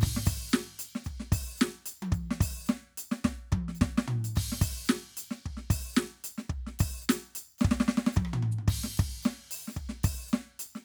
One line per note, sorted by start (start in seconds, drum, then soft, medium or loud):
0.01 kick loud
0.01 crash loud
0.17 snare medium
0.26 kick loud
0.26 percussion loud
0.50 percussion medium
0.54 snare loud
0.80 percussion loud
0.96 snare medium
1.05 kick medium
1.05 percussion soft
1.20 snare medium
1.33 kick loud
1.33 percussion loud
1.59 snare loud
1.59 percussion medium
1.86 percussion loud
2.03 high tom loud
2.13 kick loud
2.13 percussion medium
2.31 snare medium
2.41 kick loud
2.41 percussion loud
2.67 snare loud
2.67 percussion medium
2.98 percussion loud
3.12 snare loud
3.25 kick medium
3.25 snare loud
3.53 kick loud
3.53 high tom loud
3.69 snare medium
3.76 percussion medium
3.82 kick loud
3.82 snare loud
3.98 snare loud
4.09 floor tom loud
4.25 percussion medium
4.36 kick loud
4.36 crash loud
4.53 snare medium
4.62 kick loud
4.62 percussion loud
4.86 snare loud
4.86 percussion medium
5.18 percussion loud
5.32 snare medium
5.44 kick medium
5.44 percussion soft
5.58 snare medium
5.71 kick loud
5.71 percussion loud
5.95 snare loud
5.95 percussion medium
6.25 percussion loud
6.39 snare medium
6.50 kick medium
6.50 percussion soft
6.67 snare medium
6.80 kick loud
6.80 percussion loud
7.03 percussion medium
7.10 snare loud
7.10 percussion loud
7.36 percussion loud
7.59 snare loud
7.59 percussion medium
7.65 kick loud
7.81 snare loud
7.89 snare loud
7.98 snare loud
8.07 snare loud
8.14 kick loud
8.14 high tom loud
8.14 percussion medium
8.26 high tom medium
8.34 floor tom loud
8.43 floor tom loud
8.52 floor tom soft
8.59 floor tom medium
8.69 kick loud
8.69 crash loud
8.84 snare medium
8.98 kick loud
8.98 ride loud
9.24 snare loud
9.24 percussion medium
9.52 percussion loud
9.68 snare medium
9.68 percussion medium
9.75 kick medium
9.75 percussion medium
9.90 snare medium
10.04 kick loud
10.04 percussion loud
10.29 percussion medium
10.34 snare loud
10.60 percussion loud
10.76 snare medium